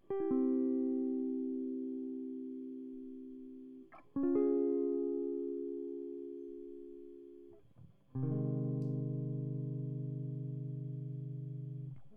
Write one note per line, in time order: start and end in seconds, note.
0.11 3.88 G4
0.21 3.91 E4
0.32 3.86 C4
4.17 7.41 C#4
4.24 7.58 F4
4.36 7.61 G#4
8.17 12.01 C3
8.24 11.95 D#3